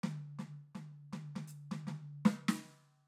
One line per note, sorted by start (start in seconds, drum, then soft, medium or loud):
0.03 snare medium
0.03 high tom medium
0.39 snare soft
0.39 high tom soft
0.75 snare soft
0.75 high tom medium
1.13 snare soft
1.13 high tom medium
1.36 snare soft
1.36 high tom medium
1.48 hi-hat pedal soft
1.72 snare medium
1.72 high tom medium
1.87 snare soft
1.87 high tom medium
2.26 snare loud
2.49 snare loud